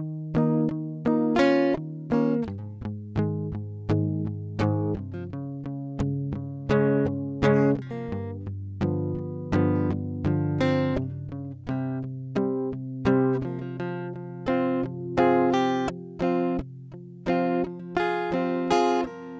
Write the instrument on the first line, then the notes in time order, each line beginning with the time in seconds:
acoustic guitar
0.00 D#3
0.36 D#3 A#3 D#4 F4
0.70 D#3 A#3
1.07 A#3 D#4 F4
1.38 A#3 C#4 F4
1.74 A#3 F4
1.79 D#3
2.11 D#3 A#3 C#4 F4
2.49 G#2
2.83 G#2
3.17 G#2 D#3 G#3
3.54 G#2 D#3
3.90 G#2 D#3 G#3
4.27 G#2 D#3
4.60 G#2 D#3 G#3
4.96 G2 C3
5.16 F3
5.34 C#3
5.66 C#3 G#3
6.00 G2 C#3 G#3
6.34 G2 C#3 G#3
6.71 C#3 G#3 C#4
7.07 G2 C#3 G#3
7.43 G2 C#3 G#3 C#4
7.75 C3
7.92 A#3
8.14 G2
8.48 G2
8.82 G2 D3 F3 B3
9.16 G2
9.54 G2 D3 F3 B3
9.92 G2 D3 F3
10.26 G2 D3 F3 B3
10.62 F3 C4
10.98 C#3 F#3
11.33 C#3
11.68 C3 G3
12.04 C3
12.37 C3 G3 C4
12.74 C3
13.07 C3 G3 C4
13.37 A#3
13.44 C3 F3
13.61 F3
13.81 F3
14.15 F3
14.48 C4 F4
14.85 C3 F3
15.19 C4 F4 G#4
15.55 C4 F4 G4
15.89 F3 F4
16.21 F3 C4
16.25 F4
16.60 C3
16.93 F3
17.27 F3 C4 F4
17.64 F3 F4
17.81 F3
17.98 F4 G#4
18.33 F3 C4 F4 G4
18.72 C4 F4 G#4
19.02 F4 A#4